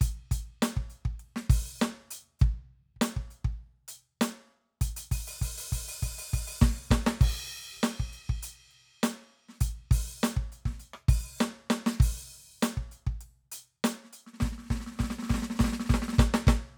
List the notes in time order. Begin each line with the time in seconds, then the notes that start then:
0.01 closed hi-hat, kick
0.31 closed hi-hat, kick
0.62 closed hi-hat, snare
0.77 kick
0.90 closed hi-hat
1.05 kick, snare
1.09 ride
1.20 closed hi-hat
1.36 snare
1.50 open hi-hat, kick
1.79 snare, hi-hat pedal
2.11 closed hi-hat
2.39 kick, hi-hat pedal
2.96 kick
3.01 closed hi-hat, snare
3.17 kick
3.31 closed hi-hat
3.45 kick, crash
3.88 closed hi-hat
4.21 closed hi-hat, snare
4.81 closed hi-hat, kick
4.96 closed hi-hat
5.11 open hi-hat, kick
5.27 open hi-hat
5.42 open hi-hat, kick
5.58 open hi-hat
5.72 open hi-hat, kick
5.88 open hi-hat
6.03 open hi-hat, kick
6.18 open hi-hat
6.33 open hi-hat, kick
6.47 open hi-hat
6.62 kick, snare
6.91 kick, snare
7.07 snare
7.21 kick, hi-hat pedal, crash
7.77 kick
7.83 closed hi-hat, snare
8.00 kick
8.13 closed hi-hat
8.29 kick
8.43 closed hi-hat
8.71 closed hi-hat
9.03 closed hi-hat, snare
9.21 snare
9.49 snare
9.52 snare
9.61 closed hi-hat, kick
9.91 open hi-hat, kick
10.22 closed hi-hat, snare, hi-hat pedal
10.37 kick
10.52 closed hi-hat
10.65 kick, snare
10.70 snare
10.73 snare
10.78 closed hi-hat, snare
10.81 snare
10.94 cross-stick
11.09 open hi-hat, kick
11.38 snare, hi-hat pedal
11.70 snare
11.86 snare
12.00 open hi-hat, kick
12.61 closed hi-hat, snare, hi-hat pedal
12.77 kick
12.91 closed hi-hat
13.07 kick, crash
13.21 closed hi-hat
13.52 closed hi-hat
13.84 closed hi-hat, snare
14.04 snare
14.13 closed hi-hat
14.27 snare
14.33 snare
14.37 snare, hi-hat pedal
14.40 kick, snare
14.45 snare
14.52 snare
14.58 snare
14.62 snare
14.66 snare
14.70 kick, snare
14.75 snare
14.79 snare
14.87 snare
14.91 snare
14.96 snare
14.99 kick, snare
15.04 snare
15.07 snare
15.10 snare
15.19 snare
15.23 snare
15.27 snare
15.30 kick, snare
15.34 snare
15.38 snare
15.42 snare
15.50 snare
15.55 snare
15.59 kick, snare
15.64 snare
15.68 snare
15.72 snare
15.80 snare
15.85 snare
15.89 kick, snare
15.94 snare
16.02 snare
16.08 snare
16.13 snare
16.18 kick, snare
16.34 snare
16.47 kick, snare